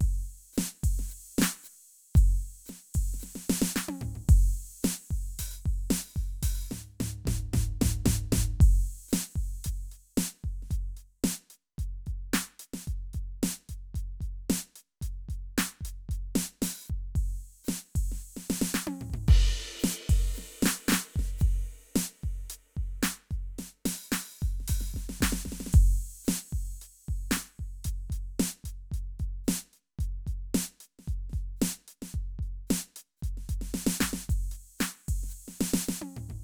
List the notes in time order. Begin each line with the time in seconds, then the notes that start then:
0.01 kick, crash
0.53 hi-hat pedal
0.58 snare
0.84 kick, crash
0.99 snare
1.09 hi-hat pedal
1.39 snare
1.42 snare
1.64 hi-hat pedal
2.15 kick, hi-hat pedal, crash
2.66 snare, hi-hat pedal
2.89 hi-hat pedal
2.95 kick, crash
3.14 snare
3.20 snare, hi-hat pedal
3.36 snare
3.50 snare
3.62 snare
3.76 snare, hi-hat pedal
3.89 high tom
4.02 kick, floor tom
4.16 floor tom
4.29 kick, crash
4.83 snare, hi-hat pedal, crash
5.11 kick, closed hi-hat
5.39 open hi-hat, kick
5.66 open hi-hat, kick
5.91 open hi-hat, snare
6.16 open hi-hat, kick
6.43 open hi-hat, kick
6.71 snare, floor tom
7.01 snare, floor tom
7.26 kick, snare, floor tom
7.54 kick, snare, floor tom
7.82 kick, snare, floor tom
8.06 kick, snare, floor tom
8.32 kick, snare, floor tom
8.61 kick, crash
9.08 hi-hat pedal
9.13 closed hi-hat, snare
9.36 kick, closed hi-hat
9.65 closed hi-hat, kick
9.92 closed hi-hat
10.18 closed hi-hat, snare
10.44 kick, closed hi-hat
10.63 snare
10.71 closed hi-hat, kick
10.97 closed hi-hat
11.24 snare
11.51 closed hi-hat
11.79 closed hi-hat, kick
12.07 closed hi-hat, kick
12.34 snare
12.60 closed hi-hat
12.74 snare
12.88 closed hi-hat, kick
13.14 kick, closed hi-hat
13.43 snare
13.69 closed hi-hat, kick
13.95 closed hi-hat, kick
14.21 closed hi-hat, kick
14.50 snare
14.76 closed hi-hat
15.02 closed hi-hat, kick
15.29 closed hi-hat, kick
15.58 snare
15.81 kick
15.85 closed hi-hat
16.09 closed hi-hat, kick
16.36 closed hi-hat, snare
16.62 open hi-hat, snare
16.85 hi-hat pedal
16.90 kick
17.16 kick, crash
17.64 hi-hat pedal
17.69 snare
17.96 kick, crash
18.12 snare
18.37 snare
18.50 snare
18.62 snare
18.74 snare, hi-hat pedal
18.87 high tom
19.01 floor tom
19.10 kick, floor tom
19.28 kick, ride
19.79 hi-hat pedal
19.84 snare
20.10 kick, crash
20.34 snare, hi-hat pedal
20.63 snare
20.66 snare
20.89 snare, hi-hat pedal
20.92 snare
21.16 kick, snare
21.38 kick, hi-hat pedal, crash
21.62 closed hi-hat
21.96 closed hi-hat, snare
22.23 kick, closed hi-hat
22.50 closed hi-hat
22.77 kick
23.03 closed hi-hat, snare
23.31 kick, closed hi-hat
23.59 closed hi-hat, snare
23.86 open hi-hat, snare
24.12 open hi-hat, snare
24.42 open hi-hat, kick
24.60 snare
24.68 open hi-hat, kick
24.81 snare
24.94 kick, snare
25.09 snare
25.21 kick, snare
25.33 snare
25.46 kick, snare
25.52 snare
25.60 snare
25.67 snare
25.73 kick, crash
26.24 hi-hat pedal
26.28 snare, crash
26.53 kick
26.82 closed hi-hat
27.04 closed hi-hat
27.09 kick
27.31 closed hi-hat, snare
27.37 snare
27.60 kick
27.85 closed hi-hat, kick
28.10 closed hi-hat, kick
28.40 snare
28.65 closed hi-hat, kick
28.92 closed hi-hat, kick
29.20 closed hi-hat, kick
29.44 hi-hat pedal
29.48 snare
29.74 closed hi-hat
29.99 closed hi-hat, kick
30.27 closed hi-hat, kick
30.55 snare
30.81 closed hi-hat
30.99 snare
31.08 closed hi-hat, kick
31.30 kick, snare
31.34 closed hi-hat
31.57 hi-hat pedal
31.62 snare
31.88 closed hi-hat
32.02 snare
32.12 kick, closed hi-hat, hi-hat pedal
32.39 kick, closed hi-hat
32.67 snare, hi-hat pedal
32.96 closed hi-hat
33.17 hi-hat pedal
33.23 closed hi-hat, kick
33.38 snare
33.50 open hi-hat, kick
33.62 snare
33.74 snare, hi-hat pedal
33.87 snare
34.01 kick, snare
34.13 snare
34.29 kick, hi-hat pedal, crash
34.52 closed hi-hat
34.79 snare, hi-hat pedal
35.09 kick, crash
35.24 snare
35.29 hi-hat pedal
35.48 snare
35.61 snare
35.74 snare
35.85 hi-hat pedal
35.89 snare
36.02 high tom
36.17 floor tom
36.29 kick, floor tom